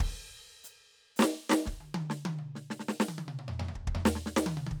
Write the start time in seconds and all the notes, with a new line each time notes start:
0.00 kick, crash
0.64 hi-hat pedal
1.16 snare, hi-hat pedal
1.22 snare
1.50 snare
1.51 snare
1.65 kick, snare
1.80 high tom
1.94 high tom
2.10 snare
2.25 high tom
2.39 mid tom
2.55 snare
2.70 snare
2.79 snare
2.88 snare
3.00 snare
3.08 hi-hat pedal, high tom
3.18 high tom
3.28 mid tom
3.39 mid tom
3.48 floor tom
3.60 floor tom
3.68 floor tom
3.75 kick
3.87 kick
3.95 floor tom
4.05 snare
4.26 snare
4.36 snare
4.46 hi-hat pedal, high tom
4.57 mid tom
4.67 high tom
4.71 kick